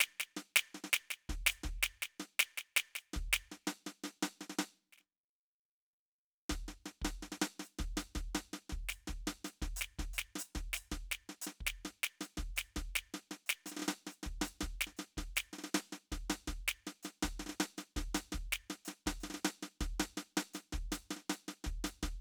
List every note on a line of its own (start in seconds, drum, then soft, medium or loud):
0.01 snare medium
0.21 snare medium
0.37 snare soft
0.37 hi-hat pedal soft
0.57 snare loud
0.75 snare soft
0.84 snare soft
0.94 snare medium
1.11 snare soft
1.30 kick soft
1.30 snare soft
1.47 snare medium
1.47 hi-hat pedal soft
1.64 kick soft
1.64 snare soft
1.83 snare medium
2.03 snare medium
2.20 snare soft
2.40 snare medium
2.58 snare soft
2.77 snare medium
2.96 snare soft
2.96 hi-hat pedal soft
3.14 kick soft
3.14 snare soft
3.34 snare medium
3.34 hi-hat pedal soft
3.52 snare soft
3.68 snare medium
3.87 snare soft
4.04 snare soft
4.23 snare medium
4.42 snare soft
4.50 snare soft
4.59 snare medium
4.93 snare soft
4.98 snare soft
5.01 snare soft
6.50 kick soft
6.50 snare medium
6.69 snare soft
6.86 snare soft
7.02 kick soft
7.02 snare medium
7.23 snare soft
7.33 snare soft
7.42 snare medium
7.60 snare soft
7.64 hi-hat pedal soft
7.79 kick soft
7.79 snare soft
7.98 snare medium
7.98 hi-hat pedal soft
8.16 kick soft
8.16 snare soft
8.35 snare medium
8.54 snare soft
8.70 kick soft
8.70 snare soft
8.90 snare soft
8.90 hi-hat pedal soft
9.08 kick soft
9.08 snare soft
9.28 snare medium
9.45 snare soft
9.45 hi-hat pedal soft
9.62 kick soft
9.62 snare soft
9.77 hi-hat pedal medium
9.82 snare medium
9.99 kick soft
9.99 snare soft
10.14 hi-hat pedal soft
10.19 snare medium
10.36 snare soft
10.36 hi-hat pedal medium
10.56 kick soft
10.56 snare soft
10.74 snare medium
10.74 hi-hat pedal medium
10.92 kick soft
10.92 snare soft
11.12 snare medium
11.30 snare soft
11.42 hi-hat pedal medium
11.47 snare soft
11.61 kick soft
11.67 snare medium
11.86 snare soft
12.04 snare medium
12.22 snare soft
12.22 hi-hat pedal soft
12.38 kick soft
12.38 snare soft
12.57 snare medium
12.57 hi-hat pedal soft
12.77 kick soft
12.77 snare soft
12.96 snare medium
13.15 snare soft
13.32 snare soft
13.47 snare medium
13.47 hi-hat pedal soft
13.67 snare soft
13.67 hi-hat pedal medium
13.72 snare soft
13.77 snare soft
13.80 snare soft
13.83 snare soft
13.88 snare medium
13.88 hi-hat pedal soft
14.07 snare soft
14.07 hi-hat pedal soft
14.24 kick soft
14.24 snare soft
14.42 snare medium
14.42 hi-hat pedal soft
14.61 kick soft
14.61 snare medium
14.82 snare medium
14.87 snare soft
14.97 snare soft
14.97 hi-hat pedal soft
15.18 kick soft
15.18 snare soft
15.37 snare medium
15.37 hi-hat pedal soft
15.54 snare soft
15.59 snare soft
15.64 snare soft
15.75 snare medium
15.75 hi-hat pedal soft
15.93 snare soft
16.12 kick soft
16.12 snare soft
16.30 snare medium
16.30 hi-hat pedal soft
16.48 kick soft
16.48 snare soft
16.69 snare medium
16.87 snare soft
17.04 snare soft
17.04 hi-hat pedal soft
17.23 kick soft
17.23 snare medium
17.40 snare soft
17.47 snare soft
17.50 snare soft
17.61 snare medium
17.78 snare soft
17.78 hi-hat pedal soft
17.97 kick soft
17.97 snare soft
18.15 snare medium
18.15 hi-hat pedal medium
18.33 kick soft
18.33 snare soft
18.53 snare medium
18.71 snare soft
18.86 snare soft
18.86 hi-hat pedal soft
19.07 kick soft
19.07 snare medium
19.21 snare soft
19.21 hi-hat pedal soft
19.31 snare soft
19.35 snare soft
19.45 snare medium
19.63 snare soft
19.81 kick soft
19.81 snare soft
20.00 snare medium
20.18 snare soft
20.38 snare medium
20.54 snare soft
20.54 hi-hat pedal soft
20.73 kick soft
20.73 snare soft
20.93 snare medium
20.93 hi-hat pedal medium
21.11 snare soft
21.17 snare soft
21.30 snare medium
21.30 hi-hat pedal soft
21.49 snare soft
21.65 kick soft
21.65 snare soft
21.85 snare medium
21.85 hi-hat pedal soft
22.03 kick soft
22.03 snare medium